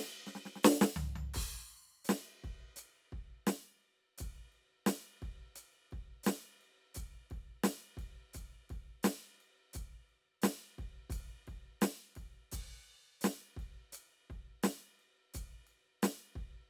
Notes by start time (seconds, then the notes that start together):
0.27 snare
0.35 snare
0.45 snare
0.56 snare
0.63 snare, hi-hat pedal
0.81 snare
0.96 floor tom
1.16 floor tom
1.34 kick, hi-hat pedal, crash
2.05 hi-hat pedal
2.09 snare, ride
2.44 kick, ride
2.76 hi-hat pedal, ride
3.11 kick, ride
3.47 snare, hi-hat pedal, ride
4.18 kick, hi-hat pedal, ride
4.52 ride
4.86 snare, hi-hat pedal, ride
5.22 kick, ride
5.56 hi-hat pedal, ride
5.91 kick, ride
6.23 snare, hi-hat pedal, ride
6.61 ride
6.94 kick, hi-hat pedal, ride
7.30 kick, ride
7.64 snare, hi-hat pedal, ride
7.97 kick, ride
8.33 kick, hi-hat pedal, ride
8.69 kick, ride
9.03 snare, hi-hat pedal, ride
9.40 ride
9.73 kick, hi-hat pedal, ride
10.09 ride
10.42 snare, hi-hat pedal, ride
10.78 kick, ride
11.10 kick, hi-hat pedal, ride
11.47 kick, ride
11.81 snare, hi-hat pedal, ride
12.15 kick, ride
12.52 kick, hi-hat pedal, crash
13.21 snare, hi-hat pedal, ride
13.57 kick, ride
13.92 hi-hat pedal, ride
14.30 kick, ride
14.63 snare, hi-hat pedal, ride
14.99 ride
15.34 kick, hi-hat pedal, ride
15.67 ride
16.02 snare, hi-hat pedal, ride
16.35 kick, ride